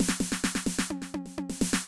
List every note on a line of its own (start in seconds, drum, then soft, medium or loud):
0.00 snare loud
0.09 snare loud
0.20 snare loud
0.32 snare loud
0.44 snare loud
0.55 snare loud
0.66 snare loud
0.79 snare loud
0.90 high tom loud
1.02 snare medium
1.14 high tom loud
1.26 snare soft
1.38 high tom loud
1.50 snare medium
1.61 snare loud
1.73 snare loud